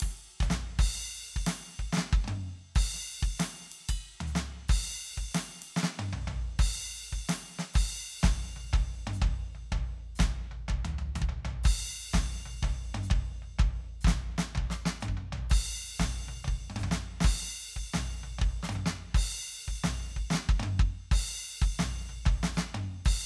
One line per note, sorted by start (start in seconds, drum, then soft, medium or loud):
0.01 kick medium
0.01 ride loud
0.41 kick loud
0.41 floor tom loud
0.41 hi-hat pedal medium
0.51 snare loud
0.80 kick loud
0.80 crash loud
0.96 snare soft
0.99 snare soft
1.07 snare soft
1.37 kick medium
1.41 hi-hat pedal medium
1.47 snare loud
1.47 ride loud
1.80 kick medium
1.93 snare loud
1.98 snare loud
2.14 kick loud
2.25 high tom medium
2.29 high tom loud
2.76 kick loud
2.76 crash loud
2.95 snare soft
3.23 kick loud
3.37 snare loud
3.37 hi-hat pedal medium
3.37 ride loud
3.73 ride medium
3.81 snare soft
3.85 snare soft
3.90 kick medium
3.90 ride bell loud
4.21 mid tom loud
4.28 hi-hat pedal medium
4.36 snare loud
4.69 kick loud
4.69 crash loud
4.83 snare soft
4.91 snare soft
5.18 kick medium
5.31 hi-hat pedal medium
5.35 snare loud
5.35 ride loud
5.63 ride medium
5.77 snare loud
5.84 snare loud
6.00 high tom loud
6.14 floor tom loud
6.28 floor tom loud
6.60 kick loud
6.60 crash loud
7.13 kick medium
7.26 hi-hat pedal soft
7.30 snare loud
7.30 ride loud
7.60 snare loud
7.75 kick loud
7.75 crash loud
8.20 snare loud
8.20 floor tom loud
8.20 hi-hat pedal medium
8.25 kick loud
8.57 floor tom medium
8.70 kick loud
8.70 floor tom loud
8.70 high tom soft
9.08 high tom loud
9.14 hi-hat pedal medium
9.23 kick loud
9.23 floor tom loud
9.56 floor tom medium
9.73 kick medium
9.73 floor tom loud
10.16 snare loud
10.16 hi-hat pedal medium
10.21 kick loud
10.21 floor tom loud
10.52 floor tom medium
10.69 kick medium
10.69 floor tom loud
10.86 mid tom loud
10.99 mid tom medium
11.16 hi-hat pedal medium
11.16 mid tom loud
11.22 kick medium
11.30 floor tom medium
11.46 floor tom loud
11.65 kick loud
11.65 crash loud
12.11 kick loud
12.11 snare loud
12.11 floor tom loud
12.11 hi-hat pedal medium
12.46 floor tom medium
12.63 kick loud
12.63 floor tom loud
12.95 high tom loud
13.04 hi-hat pedal medium
13.11 kick loud
13.11 floor tom loud
13.43 floor tom soft
13.60 kick loud
13.60 floor tom loud
14.02 kick loud
14.02 hi-hat pedal medium
14.08 snare loud
14.08 floor tom loud
14.39 snare loud
14.56 kick medium
14.56 floor tom loud
14.71 snare medium
14.86 snare loud
15.01 hi-hat pedal medium
15.01 high tom loud
15.09 kick medium
15.18 floor tom medium
15.33 floor tom loud
15.51 kick loud
15.51 crash loud
15.96 hi-hat pedal medium
16.00 kick medium
16.00 snare loud
16.00 floor tom loud
16.29 floor tom medium
16.45 kick medium
16.45 floor tom loud
16.71 high tom loud
16.77 hi-hat pedal medium
16.77 high tom loud
16.82 kick soft
16.82 floor tom loud
16.92 snare loud
17.21 kick loud
17.21 snare loud
17.21 hi-hat pedal medium
17.21 crash loud
17.77 kick medium
17.88 hi-hat pedal soft
17.94 snare loud
17.94 floor tom loud
18.24 floor tom medium
18.39 kick loud
18.39 floor tom loud
18.64 snare medium
18.70 hi-hat pedal medium
18.70 high tom loud
18.76 floor tom medium
18.87 snare loud
19.15 kick loud
19.15 crash loud
19.69 kick medium
19.76 hi-hat pedal medium
19.85 snare loud
19.85 floor tom loud
20.17 kick medium
20.31 snare loud
20.34 snare loud
20.50 kick loud
20.60 high tom loud
20.64 high tom loud
20.80 kick loud
21.12 kick loud
21.12 crash loud
21.63 kick loud
21.73 hi-hat pedal soft
21.80 snare loud
21.80 floor tom loud
22.10 floor tom medium
22.26 kick loud
22.26 floor tom loud
22.44 snare loud
22.55 snare loud
22.55 hi-hat pedal medium
22.75 high tom loud
23.06 kick loud
23.06 crash loud